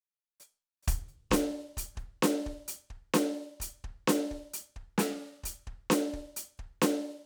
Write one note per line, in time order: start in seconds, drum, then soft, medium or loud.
0.40 hi-hat pedal medium
0.82 hi-hat pedal soft
0.87 closed hi-hat loud
0.87 kick loud
1.08 closed hi-hat soft
1.31 closed hi-hat loud
1.31 kick medium
1.31 snare loud
1.77 closed hi-hat loud
1.77 kick medium
1.95 closed hi-hat soft
1.95 kick medium
1.95 snare soft
2.22 closed hi-hat loud
2.22 snare loud
2.46 kick soft
2.68 closed hi-hat loud
2.90 kick soft
3.14 closed hi-hat loud
3.14 snare loud
3.35 closed hi-hat soft
3.60 closed hi-hat loud
3.60 kick soft
3.84 kick soft
4.07 closed hi-hat loud
4.07 snare loud
4.31 kick soft
4.54 closed hi-hat loud
4.76 kick soft
4.76 closed hi-hat soft
4.98 closed hi-hat loud
4.98 snare loud
5.43 closed hi-hat loud
5.43 kick soft
5.67 kick soft
5.67 closed hi-hat soft
5.90 closed hi-hat loud
5.90 snare loud
6.13 kick soft
6.36 closed hi-hat loud
6.58 kick soft
6.58 closed hi-hat soft
6.82 closed hi-hat loud
6.82 snare loud
7.01 closed hi-hat soft